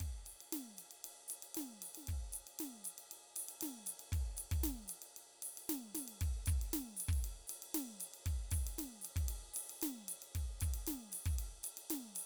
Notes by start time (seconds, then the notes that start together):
0.01 kick, ride
0.26 hi-hat pedal, ride
0.41 ride
0.53 snare, ride
0.77 hi-hat pedal, ride
0.92 ride
1.05 ride
1.29 hi-hat pedal, ride
1.43 ride
1.55 snare, ride
1.83 hi-hat pedal, ride
1.95 snare, ride
2.08 kick, ride
2.33 hi-hat pedal, ride
2.48 ride
2.60 snare, ride
2.85 hi-hat pedal, ride
2.99 ride
3.12 ride
3.37 hi-hat pedal, ride
3.49 ride
3.62 snare, ride
3.87 hi-hat pedal, ride
4.00 ride
4.13 kick, ride
4.37 hi-hat pedal, ride
4.52 kick, ride
4.64 snare, ride
4.88 hi-hat pedal, ride
5.03 ride
5.17 ride
5.43 hi-hat pedal, ride
5.58 ride
5.70 snare, ride
5.95 snare, hi-hat pedal, ride
6.09 ride
6.22 kick, ride
6.46 kick, hi-hat pedal, ride
6.62 ride
6.74 snare, ride
6.97 hi-hat pedal, ride
7.09 kick
7.14 ride
7.25 ride
7.48 hi-hat pedal, ride
7.63 ride
7.75 snare, ride
8.01 hi-hat pedal, ride
8.14 ride
8.27 kick, ride
8.51 kick, hi-hat pedal, ride
8.67 ride
8.79 snare, ride
9.02 hi-hat pedal, ride
9.17 kick, ride
9.29 ride
9.54 hi-hat pedal, ride
9.70 ride
9.82 snare, ride
10.09 hi-hat pedal, ride
10.23 ride
10.36 kick, ride
10.61 kick, hi-hat pedal, ride
10.74 ride
10.87 snare, ride
11.13 hi-hat pedal, ride
11.26 kick, ride
11.39 ride
11.64 hi-hat pedal, ride
11.78 ride
11.91 snare, ride
12.16 hi-hat pedal, ride